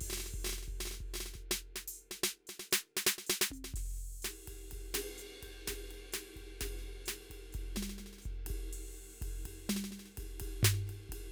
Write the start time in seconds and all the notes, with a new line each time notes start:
0.01 kick, hi-hat pedal
0.10 snare
0.13 snare
0.18 snare
0.20 snare
0.24 snare
0.26 snare
0.34 kick
0.39 kick
0.45 snare
0.47 snare
0.50 snare
0.53 snare
0.58 snare
0.63 snare
0.68 kick
0.73 kick
0.81 snare
0.86 snare
0.87 snare
0.92 snare
0.94 snare
1.01 kick
1.06 kick
1.14 snare
1.16 snare
1.21 snare
1.26 snare
1.34 kick, snare
1.41 kick
1.51 snare
1.76 snare
1.88 open hi-hat
1.94 hi-hat pedal
2.11 snare
2.24 snare
2.47 snare, hi-hat pedal
2.60 snare
2.71 snare, hi-hat pedal
2.97 snare, hi-hat pedal
3.07 snare
3.19 snare
3.27 snare, hi-hat pedal
3.42 snare
3.51 kick, hi-hat pedal, high tom
3.56 kick
3.65 snare
3.74 kick, snare, crash
3.81 kick
3.86 snare
3.91 snare
3.94 snare
3.97 snare
4.23 snare, hi-hat pedal, ride
4.45 kick, snare, ride
4.53 kick
4.71 kick, hi-hat pedal, ride
4.78 kick
4.94 snare, ride
5.18 hi-hat pedal, ride
5.27 snare
5.43 kick, ride
5.48 kick
5.67 kick, snare, hi-hat pedal, ride
5.73 kick
5.91 ride
6.13 snare, hi-hat pedal, ride
6.36 kick, ride
6.41 kick
6.61 kick, snare, hi-hat pedal, ride
6.79 snare
6.84 ride
7.06 snare, hi-hat pedal, ride
7.22 snare
7.31 kick, ride
7.41 snare
7.53 kick, hi-hat pedal, ride
7.76 snare, mid tom
7.83 snare
7.90 snare
7.98 snare, mid tom
8.06 snare
8.13 snare
8.19 snare, hi-hat pedal
8.26 kick, snare
8.32 snare
8.35 snare
8.47 kick, ride
8.73 crash
9.10 snare
9.15 snare
9.22 kick, ride
9.28 kick
9.45 kick, snare, ride
9.70 snare, mid tom
9.76 snare, mid tom
9.84 snare
9.91 snare, mid tom
10.00 snare
10.06 snare
10.11 snare
10.15 kick, snare, ride
10.20 kick, snare
10.24 snare
10.27 snare
10.35 snare
10.40 kick, ride
10.47 kick
10.63 snare, floor tom
10.74 snare
10.87 snare, ride
11.10 kick, ride
11.15 kick